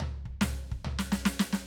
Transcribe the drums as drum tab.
SD |---o---ooooo|
FT |o--o--o-----|
BD |--o--o------|